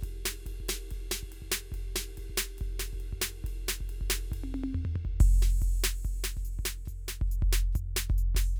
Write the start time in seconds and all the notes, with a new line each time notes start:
0.01 kick, snare, ride
0.26 snare, ride
0.40 snare
0.43 kick, snare, ride
0.60 kick
0.69 snare, ride
0.91 kick, ride
1.11 snare, ride
1.23 kick, snare
1.32 ride
1.42 kick
1.52 snare, ride
1.72 kick, snare, ride
1.96 snare, ride
2.17 kick, ride
2.30 kick
2.37 snare, ride
2.46 snare
2.57 snare, ride
2.61 kick
2.80 snare, ride
2.93 kick, snare
3.00 ride
3.13 kick
3.22 snare, ride
3.44 kick, snare, ride
3.68 snare, ride
3.81 kick, snare
3.89 ride
4.01 kick
4.10 snare, ride
4.25 snare
4.32 kick, ride
4.44 high tom
4.54 high tom
4.64 high tom
4.75 floor tom
4.85 floor tom
4.96 floor tom
5.05 kick
5.20 kick, crash
5.42 snare
5.62 closed hi-hat, kick
5.84 closed hi-hat, snare
6.05 closed hi-hat, kick
6.24 closed hi-hat, snare
6.37 kick, snare
6.45 closed hi-hat
6.59 kick
6.65 closed hi-hat, snare
6.86 closed hi-hat, kick, snare
7.08 closed hi-hat, snare
7.22 kick
7.27 snare
7.32 closed hi-hat
7.42 kick
7.53 closed hi-hat, snare
7.73 closed hi-hat, kick, snare
7.97 closed hi-hat, snare
8.09 kick, snare
8.18 closed hi-hat
8.35 open hi-hat, kick, snare
8.56 snare